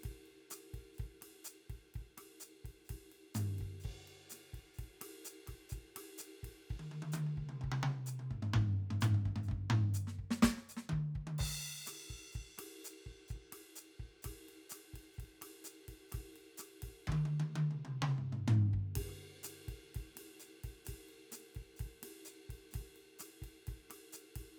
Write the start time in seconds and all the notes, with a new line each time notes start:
0.01 snare, hi-hat pedal, ride
0.05 kick
0.11 kick
0.26 ride
0.51 cross-stick, hi-hat pedal, ride
0.74 kick, ride
0.78 kick, snare
0.94 hi-hat pedal
0.99 kick, ride
1.06 kick
1.22 cross-stick, ride
1.45 hi-hat pedal, ride
1.70 kick, ride
1.75 kick
1.94 kick, ride
2.01 kick
2.18 cross-stick, ride
2.40 hi-hat pedal, ride
2.65 kick, ride
2.70 kick
2.85 hi-hat pedal
2.89 kick, snare, ride
2.96 kick
3.12 ride
3.35 floor tom, hi-hat pedal, ride
3.59 kick, ride
3.66 kick
3.80 hi-hat pedal, ride
3.85 kick, snare
3.91 kick
4.08 ride
4.30 snare, hi-hat pedal, ride
4.54 kick, ride
4.59 kick
4.74 hi-hat pedal
4.79 kick, ride
4.84 kick
5.01 cross-stick, ride
5.25 hi-hat pedal, ride
5.47 kick, cross-stick, ride
5.54 kick
5.70 kick, hi-hat pedal, ride
5.77 kick, snare
5.96 cross-stick, snare, ride
6.18 hi-hat pedal, ride
6.44 kick, ride
6.49 kick
6.70 kick, ride
6.76 kick, high tom
6.92 high tom
7.02 high tom
7.13 hi-hat pedal, high tom
7.27 high tom
7.38 kick, mid tom
7.43 kick
7.49 mid tom
7.61 kick, mid tom
7.69 kick, mid tom
7.83 mid tom
7.97 mid tom
8.06 hi-hat pedal, mid tom
8.20 mid tom
8.31 kick, floor tom
8.36 kick
8.43 floor tom
8.54 kick, floor tom
8.69 floor tom
8.80 floor tom
8.91 floor tom
9.01 hi-hat pedal, floor tom
9.15 floor tom
9.26 kick, floor tom
9.31 kick
9.36 floor tom
9.44 hi-hat pedal
9.49 kick, floor tom
9.70 floor tom
9.94 hi-hat pedal
10.07 snare
10.19 kick
10.24 kick
10.31 snare
10.43 kick, snare
10.57 snare
10.69 hi-hat pedal
10.77 snare
10.90 kick, high tom
10.98 kick
11.15 kick, high tom
11.21 kick
11.27 high tom
11.39 kick, crash
11.47 kick
11.86 cross-stick, snare, hi-hat pedal, ride
12.10 kick, ride
12.16 kick
12.32 kick, hi-hat pedal, ride
12.41 kick
12.58 cross-stick, snare, ride
12.85 hi-hat pedal
13.06 kick
13.12 kick
13.28 kick, hi-hat pedal
13.36 kick
13.52 cross-stick, snare, ride
13.76 hi-hat pedal
14.00 kick
14.05 kick
14.23 kick, cross-stick, snare, hi-hat pedal, ride
14.31 kick
14.49 ride
14.70 cross-stick, hi-hat pedal, ride
14.94 kick, ride
15.14 hi-hat pedal
15.19 kick, ride
15.24 kick
15.42 cross-stick, ride
15.65 hi-hat pedal, ride
15.88 kick, ride
16.09 cross-stick, snare, hi-hat pedal, ride
16.14 kick
16.20 kick
16.36 ride
16.58 cross-stick, snare, hi-hat pedal, ride
16.82 kick, ride
16.89 kick
17.08 kick, high tom
17.12 kick, high tom
17.26 high tom
17.40 high tom
17.56 high tom
17.71 mid tom
17.85 mid tom
18.02 mid tom
18.18 floor tom
18.33 floor tom
18.48 floor tom
18.74 kick
18.79 kick
18.96 kick, ride
19.09 cross-stick
19.44 cross-stick, hi-hat pedal, ride
19.68 kick, ride
19.74 kick
19.95 kick, ride
20.02 kick
20.16 snare, ride
20.40 hi-hat pedal, ride
20.64 kick, ride
20.70 kick
20.85 kick, snare, hi-hat pedal, ride
20.94 kick
21.09 ride
21.32 snare, hi-hat pedal, ride
21.55 kick, ride
21.61 kick
21.77 hi-hat pedal, ride
21.81 kick
21.86 kick
22.02 snare, ride
22.25 hi-hat pedal, ride
22.50 kick, ride
22.55 kick
22.71 snare, hi-hat pedal, ride
22.75 kick
22.81 kick
22.96 ride
23.19 cross-stick, snare, hi-hat pedal, ride
23.42 kick, ride
23.67 kick, ride
23.74 kick
23.90 cross-stick, ride
24.13 hi-hat pedal, ride
24.36 kick, ride
24.41 kick